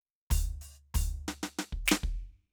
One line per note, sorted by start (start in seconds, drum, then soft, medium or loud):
0.30 open hi-hat medium
0.30 kick medium
0.30 floor tom medium
0.61 hi-hat pedal soft
0.94 open hi-hat medium
0.94 kick medium
0.94 floor tom medium
1.28 snare medium
1.43 snare medium
1.59 snare medium
1.72 kick soft
1.86 snare loud
1.86 hi-hat pedal soft
1.91 snare loud
2.03 kick medium